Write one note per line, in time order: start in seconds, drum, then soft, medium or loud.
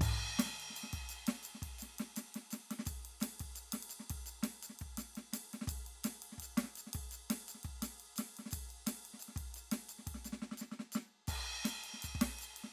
0.01 kick loud
0.01 percussion medium
0.01 ride loud
0.39 snare medium
0.39 ride loud
0.39 percussion medium
0.46 snare soft
0.60 ride medium
0.70 snare soft
0.76 ride medium
0.76 percussion medium
0.83 snare soft
0.93 kick soft
0.93 ride medium
1.09 ride medium
1.09 percussion medium
1.27 snare medium
1.27 ride loud
1.43 ride medium
1.43 percussion medium
1.55 snare soft
1.62 kick soft
1.62 ride medium
1.79 snare soft
1.79 ride medium
1.79 percussion medium
1.99 snare medium
1.99 ride medium
2.16 snare soft
2.16 ride medium
2.16 percussion medium
2.35 snare soft
2.35 ride medium
2.51 snare soft
2.51 ride medium
2.51 percussion medium
2.71 snare soft
2.71 ride medium
2.79 snare soft
2.86 kick medium
2.86 ride medium
2.86 percussion medium
3.05 ride medium
3.21 snare medium
3.21 ride loud
3.21 percussion medium
3.40 kick soft
3.40 ride medium
3.56 ride medium
3.56 percussion medium
3.72 snare medium
3.72 ride loud
3.83 ride medium
3.90 ride medium
3.90 percussion medium
4.00 snare soft
4.10 kick soft
4.10 ride medium
4.26 ride medium
4.26 percussion medium
4.43 snare medium
4.43 ride loud
4.63 ride medium
4.63 percussion medium
4.70 snare soft
4.79 kick soft
4.79 ride medium
4.98 snare soft
4.98 ride medium
4.98 percussion medium
5.16 snare soft
5.16 ride medium
5.33 snare soft
5.33 ride loud
5.33 percussion medium
5.53 snare soft
5.53 ride medium
5.61 snare soft
5.67 kick medium
5.67 ride loud
5.67 percussion medium
5.87 ride medium
6.04 snare medium
6.04 ride loud
6.04 percussion medium
6.22 ride medium
6.32 snare soft
6.38 kick soft
6.38 ride medium
6.42 percussion medium
6.57 snare medium
6.57 ride loud
6.64 snare soft
6.76 ride medium
6.76 percussion medium
6.87 snare soft
6.93 kick soft
6.93 ride loud
7.11 ride medium
7.11 percussion medium
7.30 snare medium
7.30 ride loud
7.48 ride medium
7.48 percussion medium
7.55 snare soft
7.63 kick soft
7.63 ride medium
7.82 snare medium
7.82 ride loud
7.82 percussion medium
8.00 ride medium
8.16 snare medium
8.16 ride loud
8.16 percussion medium
8.37 snare soft
8.37 ride medium
8.46 snare soft
8.51 kick soft
8.51 ride loud
8.51 percussion medium
8.71 ride soft
8.87 snare medium
8.87 ride loud
8.87 percussion medium
9.05 ride medium
9.14 snare soft
9.20 ride medium
9.20 percussion medium
9.28 snare soft
9.36 kick medium
9.36 ride medium
9.54 ride medium
9.54 percussion medium
9.72 snare medium
9.72 ride loud
9.89 ride medium
9.89 percussion medium
9.99 snare soft
10.07 kick soft
10.07 ride medium
10.14 snare soft
10.25 snare soft
10.25 percussion medium
10.33 snare soft
10.42 snare soft
10.52 snare soft
10.58 snare soft
10.58 percussion medium
10.72 snare soft
10.79 snare soft
10.92 snare medium
10.92 percussion medium
11.28 kick medium
11.28 percussion medium
11.28 ride loud
11.65 snare medium
11.65 ride loud
11.65 percussion medium
11.84 ride medium
11.94 snare soft
12.02 kick soft
12.02 ride medium
12.02 percussion medium
12.15 kick soft
12.21 snare medium
12.21 ride loud
12.39 ride medium
12.39 percussion medium
12.56 ride medium
12.64 snare soft